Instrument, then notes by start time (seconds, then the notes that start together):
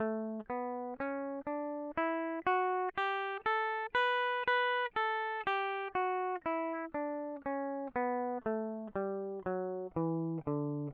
electric guitar
0.01 A3
0.51 B3
1.01 C#4
1.47 D4
1.98 E4
2.47 F#4
2.98 G4
3.47 A4
3.95 B4
4.48 B4
4.97 A4
5.47 G4
5.96 F#4
6.46 E4
6.95 D4
7.46 C#4
7.96 B3
8.47 A3
8.97 G3
9.47 F#3
9.98 E3
10.49 D3